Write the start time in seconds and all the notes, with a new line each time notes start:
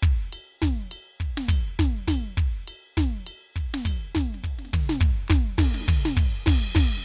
0.01 kick, hi-hat pedal, ride
0.32 closed hi-hat, ride bell
0.61 kick, snare, hi-hat pedal, ride
0.91 ride bell
1.18 kick, hi-hat pedal, ride
1.37 snare
1.47 kick, hi-hat pedal, ride bell
1.79 kick, snare, ride
2.08 kick, snare, ride bell
2.35 kick, hi-hat pedal, ride
2.68 ride bell
2.96 kick, snare, hi-hat pedal, ride
3.27 ride bell
3.54 kick, hi-hat pedal, ride
3.74 snare
3.85 kick, ride bell
4.15 kick, snare, hi-hat pedal, ride
4.34 snare
4.44 kick, ride
4.59 snare
4.65 snare
4.69 snare
4.73 kick, hi-hat pedal, mid tom
4.89 snare
5.00 kick, ride
5.28 kick, percussion, snare
5.58 kick, snare, ride
5.74 snare
5.81 snare
5.83 snare
5.88 kick, mid tom
6.05 snare
6.16 kick, ride
6.46 kick, snare, crash
6.75 kick, snare, crash
6.97 snare